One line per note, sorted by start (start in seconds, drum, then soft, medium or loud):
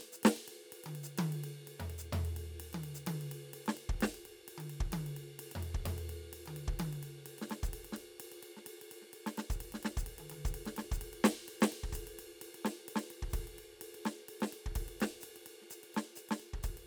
0.01 ride soft
0.12 hi-hat pedal medium
0.23 snare loud
0.23 ride medium
0.36 ride medium
0.48 ride medium
0.72 ride medium
0.84 high tom medium
0.84 ride medium
0.95 ride medium
1.03 hi-hat pedal medium
1.18 high tom loud
1.18 ride medium
1.32 ride medium
1.44 ride medium
1.67 ride medium
1.80 floor tom medium
1.80 ride soft
1.90 ride soft
1.98 hi-hat pedal medium
2.13 floor tom loud
2.13 ride medium
2.25 ride soft
2.36 ride medium
2.60 ride medium
2.73 high tom medium
2.73 ride medium
2.84 ride medium
2.94 hi-hat pedal medium
3.07 high tom loud
3.07 ride medium
3.21 ride soft
3.31 ride medium
3.53 ride medium
3.66 snare medium
3.66 ride medium
3.77 ride medium
3.89 kick medium
4.01 snare medium
4.01 ride medium
4.14 ride soft
4.25 ride medium
4.48 ride medium
4.58 high tom medium
4.58 ride medium
4.70 ride medium
4.80 kick medium
4.92 high tom loud
4.92 ride medium
5.06 ride soft
5.17 ride medium
5.39 ride medium
5.51 floor tom medium
5.51 ride medium
5.63 ride medium
5.74 kick medium
5.85 floor tom medium
5.85 ride medium
5.98 ride medium
6.09 ride medium
6.33 ride medium
6.46 high tom medium
6.46 ride soft
6.56 ride medium
6.68 kick medium
6.79 high tom loud
6.79 ride medium
6.93 ride soft
7.03 ride medium
7.26 ride medium
7.38 snare soft
7.38 ride medium
7.50 snare medium
7.50 ride medium
7.63 kick medium
7.63 hi-hat pedal medium
7.73 ride medium
7.85 ride medium
7.92 snare soft
7.92 ride medium
8.20 ride medium
8.32 ride medium
8.43 ride medium
8.57 snare soft
8.65 snare soft
8.65 ride medium
8.81 ride medium
8.91 ride medium
9.02 snare soft
9.13 ride medium
9.26 snare medium
9.26 ride medium
9.38 snare medium
9.38 ride medium
9.50 kick medium
9.50 hi-hat pedal medium
9.60 ride medium
9.72 snare soft
9.72 ride medium
9.83 snare medium
9.83 ride medium
9.97 kick medium
9.97 hi-hat pedal medium
10.06 ride medium
10.18 high tom soft
10.18 ride medium
10.30 high tom soft
10.30 ride medium
10.45 kick medium
10.45 hi-hat pedal medium
10.54 ride medium
10.66 snare soft
10.66 ride medium
10.77 snare medium
10.77 ride medium
10.91 kick medium
10.91 hi-hat pedal medium
11.01 ride medium
11.13 ride medium
11.24 snare loud
11.24 ride medium
11.48 ride medium
11.61 snare loud
11.61 ride medium
11.72 ride medium
11.83 kick soft
11.92 kick soft
11.92 hi-hat pedal medium
11.92 ride medium
12.07 ride medium
12.19 ride medium
12.41 ride medium
12.54 ride medium
12.65 snare medium
12.65 ride medium
12.88 ride medium
12.96 snare medium
12.96 ride medium
13.10 ride medium
13.22 kick medium
13.30 kick medium
13.30 hi-hat pedal soft
13.30 ride medium
13.47 ride soft
13.58 ride medium
13.81 ride medium
13.94 ride soft
14.05 snare medium
14.05 ride medium
14.29 ride medium
14.41 snare medium
14.41 ride soft
14.53 ride medium
14.66 kick medium
14.75 kick medium
14.75 ride medium
14.88 ride medium
15.00 snare medium
15.00 ride medium
15.21 hi-hat pedal medium
15.21 ride medium
15.36 ride soft
15.62 snare soft
15.70 hi-hat pedal medium
15.70 ride medium
15.83 ride soft
15.92 hi-hat pedal soft
15.92 ride soft
15.97 snare medium
16.15 hi-hat pedal medium
16.15 ride medium
16.29 snare medium
16.29 ride soft
16.40 ride soft
16.53 kick soft
16.63 kick medium
16.63 hi-hat pedal medium
16.63 ride medium
16.77 ride soft